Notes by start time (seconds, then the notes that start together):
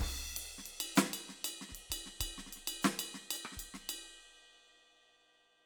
0.01 kick, crash
0.07 kick
0.21 cross-stick
0.28 cross-stick
0.32 snare
0.37 ride
0.58 snare
0.66 ride
0.81 ride bell
0.96 snare, hi-hat pedal
1.06 snare
1.14 ride bell
1.29 snare
1.45 hi-hat pedal, ride bell
1.62 snare
1.69 kick, snare
1.75 ride
1.90 kick, hi-hat pedal, ride bell
2.06 snare
2.21 kick, ride bell
2.38 snare
2.47 snare
2.53 snare, ride bell
2.68 ride bell
2.83 snare, hi-hat pedal
3.00 ride bell
3.15 snare
3.31 hi-hat pedal, ride bell
3.45 cross-stick
3.52 snare
3.57 kick, ride bell
3.74 snare
3.89 ride bell